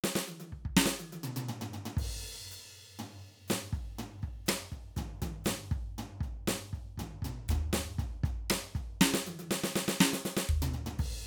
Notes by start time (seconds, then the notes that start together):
0.04 snare
0.15 snare
0.26 hi-hat pedal, high tom
0.40 high tom
0.52 kick
0.65 kick
0.77 snare
0.86 snare
0.99 high tom
1.12 high tom
1.23 mid tom
1.36 mid tom
1.48 floor tom
1.61 floor tom
1.73 floor tom
1.85 floor tom
1.97 kick, crash
2.51 hi-hat pedal
2.99 floor tom
3.48 snare, floor tom, hi-hat pedal
3.73 kick, floor tom
3.98 floor tom
4.22 kick, floor tom
4.46 snare, hi-hat pedal, floor tom
4.72 kick, floor tom
4.96 kick, floor tom, high tom
5.22 kick, floor tom, high tom
5.44 snare, floor tom, hi-hat pedal
5.71 kick, floor tom
5.98 floor tom
6.21 kick, floor tom
6.47 snare, floor tom, hi-hat pedal
6.73 kick, floor tom
6.97 kick, floor tom, high tom
7.22 kick, floor tom, mid tom
7.48 floor tom, hi-hat pedal, mid tom
7.73 snare, floor tom
7.98 kick, floor tom
8.24 kick, floor tom
8.50 snare, floor tom
8.75 kick, floor tom
9.01 snare
9.14 snare
9.26 high tom
9.39 high tom
9.51 snare
9.64 snare
9.69 hi-hat pedal
9.76 snare
9.88 snare
10.00 snare
10.13 snare
10.25 snare
10.37 snare
10.49 mid tom
10.62 mid tom
10.73 floor tom
10.86 floor tom
10.99 kick, crash